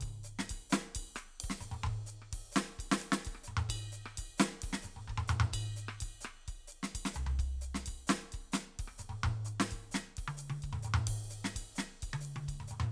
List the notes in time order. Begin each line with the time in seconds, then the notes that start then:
0.01 kick, ride bell
0.08 kick
0.24 hi-hat pedal, ride
0.39 snare
0.50 kick, ride bell
0.57 kick
0.70 snare, hi-hat pedal
0.95 kick, ride bell
1.15 cross-stick, hi-hat pedal
1.40 kick, ride
1.50 snare
1.61 hi-hat pedal, mid tom
1.72 mid tom
1.84 kick, mid tom
1.92 kick
2.06 hi-hat pedal
2.22 cross-stick
2.33 kick, ride
2.52 hi-hat pedal
2.56 snare
2.79 kick, ride bell
2.92 snare
2.98 hi-hat pedal, ride
3.12 snare
3.25 kick, ride bell
3.33 kick, cross-stick
3.44 hi-hat pedal
3.48 mid tom
3.57 mid tom
3.69 kick, ride bell
3.74 kick
3.91 hi-hat pedal, ride
4.06 cross-stick
4.17 kick, ride bell
4.38 snare, hi-hat pedal
4.62 kick, ride
4.69 kick, snare
4.82 hi-hat pedal, mid tom
4.96 mid tom
5.08 kick, mid tom
5.18 mid tom
5.28 hi-hat pedal, mid tom
5.40 mid tom
5.53 kick, ride bell
5.74 hi-hat pedal, ride
5.89 cross-stick
6.01 kick, ride bell
6.08 kick
6.21 cross-stick, hi-hat pedal
6.48 kick, ride bell
6.67 hi-hat pedal
6.72 ride
6.83 snare
6.95 kick, ride bell
7.05 snare
7.14 floor tom, hi-hat pedal
7.27 floor tom
7.39 kick, ride bell
7.45 kick
7.49 kick
7.61 hi-hat pedal, ride
7.75 snare
7.86 kick, ride bell
8.07 snare, hi-hat pedal
8.32 kick, ride bell
8.52 snare, hi-hat pedal
8.79 kick, ride
8.87 kick, cross-stick
8.98 hi-hat pedal, mid tom
9.24 kick, mid tom
9.45 hi-hat pedal, mid tom
9.60 snare
9.71 kick, ride bell
9.92 snare, hi-hat pedal
10.17 kick, ride
10.28 high tom
10.37 hi-hat pedal, ride
10.50 high tom
10.62 kick, ride bell
10.73 mid tom
10.83 hi-hat pedal, mid tom
10.94 mid tom
11.07 kick, ride
11.30 hi-hat pedal
11.45 snare
11.56 kick, ride bell
11.75 snare, hi-hat pedal
12.02 kick, ride bell
12.09 kick
12.13 high tom
12.21 hi-hat pedal
12.25 ride
12.36 high tom
12.48 kick, ride bell
12.54 kick
12.60 mid tom
12.68 hi-hat pedal, mid tom
12.80 mid tom